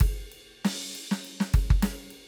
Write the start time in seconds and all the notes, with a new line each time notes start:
0.01 kick, ride
0.33 ride
0.65 snare, ride
0.96 ride
1.12 snare
1.25 ride
1.41 snare
1.54 kick, ride
1.71 kick
1.83 snare, ride
2.11 ride